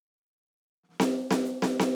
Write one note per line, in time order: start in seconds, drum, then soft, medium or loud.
0.83 snare soft
0.89 snare soft
0.92 snare soft
0.94 snare soft
1.00 snare loud
1.31 snare loud
1.45 hi-hat pedal medium
1.62 snare loud
1.80 snare loud